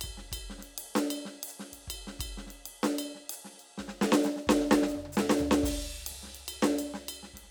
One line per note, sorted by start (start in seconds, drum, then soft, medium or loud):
0.01 kick soft
0.01 ride bell loud
0.17 snare soft
0.32 kick soft
0.32 ride bell loud
0.50 snare soft
0.58 snare soft
0.63 ride medium
0.78 ride loud
0.95 snare loud
0.95 hi-hat pedal loud
1.10 ride bell loud
1.25 snare medium
1.43 ride loud
1.48 hi-hat pedal medium
1.59 snare medium
1.72 kick soft
1.72 ride medium
1.87 kick soft
1.87 hi-hat pedal soft
1.87 ride bell loud
2.07 snare medium
2.19 kick soft
2.19 ride bell loud
2.37 snare soft
2.46 snare soft
2.46 ride medium
2.66 ride loud
2.83 snare loud
2.83 hi-hat pedal medium
2.98 ride bell loud
3.15 snare soft
3.29 hi-hat pedal medium
3.29 ride loud
3.45 snare soft
3.53 snare soft
3.59 ride bell soft
3.78 kick soft
3.78 snare medium
3.88 snare medium
4.01 snare loud
4.12 snare loud
4.23 snare medium
4.23 hi-hat pedal medium
4.36 snare soft
4.47 kick soft
4.47 snare loud
4.61 snare soft
4.71 kick soft
4.71 snare loud
4.82 snare medium
4.88 kick soft
4.88 hi-hat pedal medium
4.95 mid tom soft
5.05 high tom soft
5.12 hi-hat pedal medium
5.17 snare loud
5.29 snare loud
5.38 floor tom medium
5.38 hi-hat pedal medium
5.51 snare loud
5.63 kick medium
5.63 hi-hat pedal loud
5.63 crash medium
5.70 kick soft
5.76 kick soft
5.90 cross-stick soft
6.06 snare soft
6.06 ride loud
6.23 snare soft
6.26 snare soft
6.35 ride medium
6.48 ride bell loud
6.62 snare loud
6.79 ride bell medium
6.94 snare medium
7.08 ride bell loud
7.13 hi-hat pedal soft
7.23 snare soft
7.33 kick soft
7.33 snare soft
7.33 ride medium
7.43 snare soft